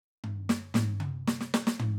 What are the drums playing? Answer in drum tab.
Snare     |----o-o---oooo--|
Mid tom   |--------o-------|
Floor tom |--o---o-------o-|